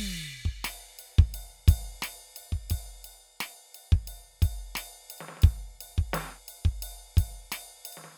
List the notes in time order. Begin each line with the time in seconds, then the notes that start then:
0.46 kick
0.65 snare, ride bell
0.99 ride
1.19 kick
1.34 ride bell
1.68 kick, ride
2.03 snare, ride
2.37 ride
2.53 kick
2.70 kick, ride
3.05 ride
3.41 snare, hi-hat pedal, ride
3.75 ride
3.92 kick, snare
4.08 ride
4.42 kick, ride
4.76 snare, ride
5.10 ride
5.18 snare, ride
5.29 snare
5.37 snare
5.42 kick, ride
5.81 ride
5.98 kick
6.14 snare, ride
6.48 ride
6.65 kick
6.83 ride
7.17 kick, ride
7.52 snare, ride
7.86 ride
7.93 ride
7.97 snare
8.04 snare
8.12 snare